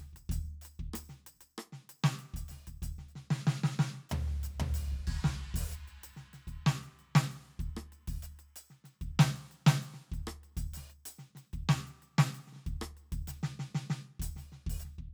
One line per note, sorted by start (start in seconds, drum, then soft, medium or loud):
0.01 snare soft
0.13 kick soft
0.13 percussion soft
0.30 kick medium
0.30 percussion medium
0.62 percussion soft
0.65 percussion medium
0.80 kick soft
0.94 cross-stick medium
0.94 percussion loud
1.09 snare soft
1.27 percussion medium
1.35 kick soft
1.41 percussion medium
1.58 cross-stick medium
1.73 snare soft
1.90 percussion medium
2.04 snare loud
2.19 percussion soft
2.34 kick soft
2.34 percussion medium
2.49 snare soft
2.49 percussion medium
2.67 kick soft
2.67 percussion medium
2.82 kick soft
2.82 percussion medium
2.99 snare soft
3.09 percussion soft
3.16 snare soft
3.31 snare medium
3.47 snare loud
3.64 snare medium
3.79 snare loud
3.94 snare soft
4.10 floor tom loud
4.10 percussion soft
4.27 snare soft
4.44 snare soft
4.44 percussion medium
4.60 floor tom loud
4.74 percussion medium
4.87 snare soft
4.92 kick soft
5.07 kick medium
5.07 crash medium
5.24 snare medium
5.41 snare soft
5.54 kick medium
5.54 percussion loud
5.72 snare soft
5.72 percussion medium
5.88 percussion soft
6.04 percussion medium
6.17 snare soft
6.33 snare soft
6.33 percussion soft
6.47 kick soft
6.47 percussion soft
6.67 snare loud
6.84 percussion soft
6.99 percussion soft
7.16 snare loud
7.32 percussion soft
7.45 snare soft
7.60 kick medium
7.60 percussion soft
7.77 cross-stick medium
7.92 percussion soft
8.08 kick medium
8.08 percussion medium
8.23 percussion medium
8.39 percussion soft
8.56 percussion medium
8.70 snare soft
8.84 snare soft
8.84 percussion soft
9.01 kick soft
9.01 percussion soft
9.19 snare loud
9.36 percussion soft
9.51 percussion soft
9.67 snare loud
9.83 percussion soft
9.94 snare soft
10.12 kick medium
10.12 percussion soft
10.27 cross-stick medium
10.44 percussion soft
10.57 kick medium
10.57 percussion medium
10.74 snare soft
10.74 percussion medium
10.90 percussion soft
11.06 percussion medium
11.19 snare soft
11.35 snare soft
11.35 percussion soft
11.53 kick soft
11.53 percussion soft
11.69 snare loud
11.87 percussion soft
12.02 percussion soft
12.19 snare loud
12.35 percussion soft
12.48 snare soft
12.53 snare soft
12.56 snare soft
12.62 snare soft
12.67 kick medium
12.67 percussion soft
12.82 cross-stick medium
12.97 percussion soft
13.12 kick medium
13.12 percussion medium
13.28 snare soft
13.28 percussion medium
13.43 snare medium
13.60 snare medium
13.75 snare medium
13.90 snare medium
14.20 kick medium
14.20 percussion loud
14.37 snare soft
14.37 percussion soft
14.52 snare soft
14.67 kick medium
14.67 percussion medium
14.80 percussion medium
14.85 snare soft
14.99 kick soft